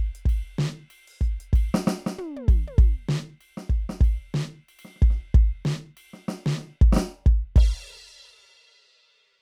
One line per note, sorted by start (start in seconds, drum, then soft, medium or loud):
0.16 closed hi-hat medium
0.27 kick medium
0.27 ride bell medium
0.60 snare loud
0.91 ride bell medium
1.09 open hi-hat medium
1.22 kick medium
1.26 hi-hat pedal soft
1.41 closed hi-hat medium
1.54 kick loud
1.54 ride bell medium
1.75 snare loud
1.88 snare loud
2.08 snare medium
2.08 hi-hat pedal soft
2.19 floor tom loud
2.37 high tom medium
2.49 kick loud
2.49 ride bell soft
2.68 high tom medium
2.79 kick loud
2.79 ride bell soft
3.10 snare loud
3.42 ride soft
3.58 snare medium
3.71 kick medium
3.90 snare medium
4.02 kick loud
4.02 ride bell soft
4.35 snare loud
4.35 hi-hat pedal soft
4.70 ride bell soft
4.80 ride medium
4.86 snare soft
4.97 snare soft
5.03 kick loud
5.11 snare soft
5.35 kick loud
5.35 ride bell soft
5.66 snare loud
5.66 hi-hat pedal medium
5.98 ride bell medium
6.15 snare soft
6.29 snare medium
6.29 hi-hat pedal soft
6.47 snare loud
6.59 snare soft
6.82 kick loud
6.94 snare loud
6.98 snare loud
7.27 kick loud
7.57 open hi-hat medium
7.57 kick loud
7.57 crash loud
7.66 hi-hat pedal soft